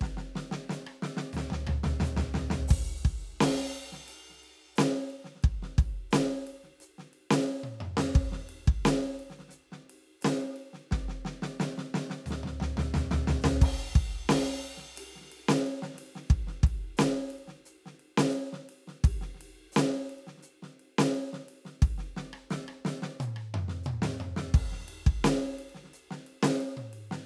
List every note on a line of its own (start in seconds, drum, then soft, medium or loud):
0.01 kick medium
0.01 snare medium
0.17 snare medium
0.36 snare medium
0.52 snare medium
0.70 snare medium
0.70 hi-hat pedal medium
0.87 cross-stick medium
1.03 snare medium
1.17 snare medium
1.33 snare medium
1.33 floor tom medium
1.33 hi-hat pedal medium
1.50 snare medium
1.50 floor tom loud
1.67 cross-stick medium
1.67 floor tom loud
1.84 snare medium
1.84 floor tom loud
2.00 snare medium
2.00 floor tom loud
2.05 hi-hat pedal medium
2.17 snare medium
2.17 floor tom loud
2.34 snare medium
2.34 floor tom loud
2.46 hi-hat pedal soft
2.50 snare medium
2.50 floor tom loud
2.68 open hi-hat loud
2.68 kick loud
2.68 ride medium
2.81 ride soft
3.05 kick loud
3.41 snare loud
3.41 crash loud
3.72 ride soft
3.92 snare soft
4.08 hi-hat pedal medium
4.08 ride medium
4.30 snare soft
4.44 ride soft
4.76 snare loud
4.76 hi-hat pedal medium
4.76 ride medium
5.10 ride soft
5.20 ride soft
5.25 snare soft
5.36 snare soft
5.43 kick loud
5.43 ride soft
5.63 snare soft
5.78 kick loud
5.78 ride soft
6.11 snare loud
6.11 hi-hat pedal medium
6.11 ride medium
6.47 ride medium
6.64 snare soft
6.80 hi-hat pedal medium
6.80 ride soft
6.98 snare soft
7.13 ride soft
7.31 snare loud
7.40 hi-hat pedal medium
7.48 ride soft
7.64 high tom medium
7.81 mid tom loud
7.97 snare loud
8.14 kick loud
8.14 crash medium
8.32 snare medium
8.49 ride medium
8.68 kick loud
8.85 snare loud
8.85 ride medium
9.19 ride soft
9.30 snare soft
9.30 ride soft
9.39 snare soft
9.48 snare soft
9.48 hi-hat pedal medium
9.55 ride soft
9.72 snare soft
9.90 ride medium
10.21 snare loud
10.21 hi-hat pedal soft
10.21 ride medium
10.56 ride soft
10.73 snare soft
10.91 kick medium
10.91 snare medium
11.09 snare soft
11.25 snare medium
11.42 snare medium
11.60 snare loud
11.60 hi-hat pedal medium
11.78 snare medium
11.94 snare loud
12.10 snare medium
12.26 floor tom medium
12.26 hi-hat pedal medium
12.31 snare medium
12.43 snare medium
12.43 floor tom medium
12.60 snare medium
12.60 floor tom loud
12.77 snare medium
12.77 floor tom loud
12.94 snare medium
12.94 floor tom loud
12.94 hi-hat pedal soft
13.11 snare medium
13.11 floor tom loud
13.28 snare loud
13.28 floor tom loud
13.42 snare loud
13.42 floor tom loud
13.42 hi-hat pedal soft
13.62 kick loud
13.62 hi-hat pedal soft
13.62 ride medium
13.62 crash loud
13.95 kick loud
14.29 snare loud
14.29 crash loud
14.77 snare soft
14.96 hi-hat pedal medium
14.96 ride loud
15.16 snare soft
15.21 snare soft
15.32 ride medium
15.39 ride soft
15.49 snare loud
15.56 hi-hat pedal medium
15.67 ride soft
15.82 snare medium
15.94 snare soft
15.98 ride medium
16.07 ride soft
16.15 snare soft
16.30 kick loud
16.30 ride soft
16.47 snare soft
16.63 kick loud
16.63 ride medium
16.97 snare loud
16.97 hi-hat pedal medium
16.97 ride medium
17.31 ride medium
17.39 ride soft
17.48 snare soft
17.65 hi-hat pedal medium
17.65 ride soft
17.73 ride soft
17.86 snare soft
18.00 ride soft
18.18 snare loud
18.30 hi-hat pedal medium
18.36 ride soft
18.53 snare soft
18.69 ride medium
18.88 snare soft
19.04 kick loud
19.04 ride medium
19.10 hi-hat pedal soft
19.21 snare soft
19.35 snare soft
19.41 ride medium
19.72 hi-hat pedal medium
19.72 ride medium
19.76 snare loud
20.10 ride soft
20.19 ride soft
20.27 snare soft
20.38 snare soft
20.43 hi-hat pedal medium
20.43 ride soft
20.63 snare soft
20.80 ride soft
20.99 snare loud
21.04 hi-hat pedal medium
21.15 ride soft
21.33 snare medium
21.49 ride medium
21.65 snare soft
21.82 kick loud
21.82 ride medium
21.98 snare soft
22.17 snare medium
22.33 cross-stick medium
22.50 snare medium
22.50 hi-hat pedal soft
22.68 cross-stick medium
22.85 snare loud
23.02 snare medium
23.20 hi-hat pedal medium
23.20 high tom loud
23.36 cross-stick medium
23.54 mid tom loud
23.68 snare medium
23.84 hi-hat pedal soft
23.84 high tom loud
24.02 snare loud
24.20 mid tom loud
24.37 snare medium
24.54 kick loud
24.54 crash medium
24.72 snare soft
24.80 snare soft
24.88 ride medium
25.07 kick loud
25.24 snare loud
25.24 ride medium
25.59 ride medium
25.70 ride soft
25.75 snare soft
25.84 snare soft
25.94 hi-hat pedal medium
25.94 ride medium
26.11 snare medium
26.27 ride medium
26.43 snare loud
26.53 hi-hat pedal medium
26.61 ride medium
26.77 high tom medium
26.93 ride medium
27.11 snare medium